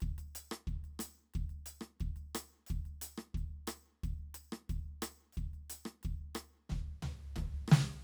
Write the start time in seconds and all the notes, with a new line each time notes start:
0.01 kick, percussion
0.19 percussion
0.36 percussion
0.52 cross-stick
0.68 kick, percussion
0.84 percussion
1.00 cross-stick, percussion
1.34 kick, percussion
1.50 percussion
1.66 percussion
1.81 cross-stick
2.00 kick, percussion
2.17 percussion
2.35 cross-stick, percussion
2.67 percussion
2.70 kick, percussion
2.86 percussion
3.02 percussion
3.18 cross-stick
3.35 kick, percussion
3.68 cross-stick, percussion
4.04 kick, percussion
4.35 percussion
4.53 cross-stick
4.70 kick, percussion
5.03 cross-stick, percussion
5.33 percussion
5.37 kick, percussion
5.54 percussion
5.70 percussion
5.86 cross-stick
6.03 kick, percussion
6.35 cross-stick, percussion
6.70 kick, snare, floor tom
7.03 snare, floor tom
7.36 kick, cross-stick, floor tom
7.68 cross-stick, snare